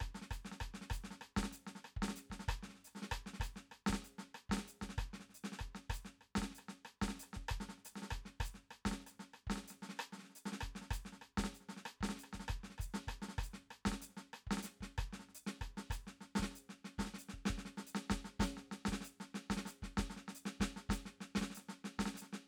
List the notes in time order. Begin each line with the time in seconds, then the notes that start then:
0.01 kick, cross-stick
0.15 snare
0.22 snare
0.31 kick, cross-stick, hi-hat pedal
0.45 snare
0.52 snare
0.61 kick, cross-stick
0.74 snare
0.82 snare
0.91 kick, cross-stick, hi-hat pedal
1.04 snare
1.11 snare
1.22 cross-stick
1.37 kick, snare
1.44 snare
1.52 snare, hi-hat pedal
1.67 snare
1.76 snare
1.85 cross-stick
1.97 kick
2.03 snare
2.09 snare
2.16 snare, hi-hat pedal
2.31 kick, snare
2.40 snare
2.49 kick, cross-stick
2.63 snare
2.69 snare
2.75 snare
2.79 snare
2.85 cross-stick, hi-hat pedal
2.94 snare
2.96 snare
3.03 snare
3.12 kick, cross-stick
3.27 snare
3.34 snare
3.40 kick, cross-stick, hi-hat pedal
3.57 snare
3.72 cross-stick
3.87 kick, snare
3.93 snare
4.02 snare, hi-hat pedal
4.19 snare
4.35 cross-stick
4.50 kick, snare
4.58 snare
4.66 snare, hi-hat pedal
4.74 snare
4.82 kick, snare
4.90 snare
4.98 kick, cross-stick
5.14 snare
5.20 snare
5.30 snare
5.35 hi-hat pedal
5.45 snare
5.53 snare
5.60 kick, cross-stick
5.75 snare
5.90 kick, cross-stick
5.94 hi-hat pedal
6.05 snare
6.21 cross-stick
6.36 kick, snare
6.42 snare
6.51 snare
6.55 cross-stick, hi-hat pedal
6.69 snare
6.86 cross-stick
7.02 kick, snare
7.09 snare
7.16 snare, hi-hat pedal
7.24 cross-stick
7.34 kick, snare
7.49 kick, cross-stick
7.61 snare
7.69 snare
7.78 snare
7.85 cross-stick, hi-hat pedal
7.92 snare
7.96 snare
8.03 snare
8.11 kick, cross-stick
8.26 snare
8.41 kick, cross-stick
8.45 hi-hat pedal
8.55 snare
8.71 cross-stick
8.86 kick, snare
8.92 snare
9.01 snare
9.07 cross-stick, hi-hat pedal
9.11 snare
9.20 snare
9.34 cross-stick
9.48 kick, snare
9.56 snare
9.64 snare
9.68 cross-stick, snare, hi-hat pedal
9.76 snare
9.83 snare
9.90 snare
9.95 snare
10.00 cross-stick
10.13 snare
10.19 snare
10.23 snare
10.30 snare
10.36 cross-stick, hi-hat pedal
10.46 snare
10.53 snare
10.61 kick, cross-stick
10.76 snare
10.82 snare
10.91 kick, cross-stick, hi-hat pedal
11.06 snare
11.13 snare
11.22 cross-stick
11.38 kick, snare
11.44 snare
11.53 snare, hi-hat pedal
11.61 snare
11.69 snare
11.77 snare
11.86 cross-stick
12.01 kick, snare
12.10 snare
12.16 snare, hi-hat pedal
12.24 cross-stick
12.33 kick, snare
12.40 snare
12.49 kick, cross-stick
12.64 snare
12.70 snare
12.79 kick, cross-stick, hi-hat pedal
12.95 snare
13.08 kick, cross-stick
13.23 snare
13.29 snare
13.39 kick, cross-stick
13.44 kick, hi-hat pedal
13.54 snare
13.71 cross-stick
13.86 kick, snare
13.92 snare
14.02 snare, hi-hat pedal
14.10 snare
14.17 snare
14.34 cross-stick
14.47 kick
14.51 snare
14.58 snare
14.63 snare, hi-hat pedal
14.81 kick, snare
14.99 kick, cross-stick
15.13 snare
15.20 snare
15.29 snare
15.35 hi-hat pedal
15.47 snare
15.62 kick, cross-stick
15.78 snare
15.91 kick, cross-stick, hi-hat pedal
16.08 snare
16.21 snare
16.36 kick, snare
16.43 snare
16.51 snare
16.56 hi-hat pedal
16.70 snare
16.85 snare
16.99 kick, snare
17.06 snare
17.14 snare
17.19 hi-hat pedal
17.29 snare
17.34 kick
17.46 snare
17.50 kick
17.58 snare
17.66 snare
17.78 snare
17.87 hi-hat pedal
17.95 snare
18.10 kick, snare
18.25 snare
18.40 kick, snare, hi-hat pedal
18.58 snare
18.72 snare
18.86 kick, snare
18.93 snare
19.01 snare, hi-hat pedal
19.21 snare
19.35 snare
19.50 kick, snare
19.57 snare
19.66 snare, hi-hat pedal
19.83 kick, snare
19.98 kick, snare
20.10 snare
20.17 snare
20.29 snare
20.35 hi-hat pedal
20.46 snare
20.61 kick, snare
20.77 snare
20.90 kick, snare, hi-hat pedal
21.06 snare
21.21 snare
21.36 kick, snare
21.42 snare
21.51 snare
21.55 snare, hi-hat pedal
21.69 snare
21.85 snare
21.99 kick, snare
22.06 snare
22.15 snare, hi-hat pedal
22.23 snare
22.33 snare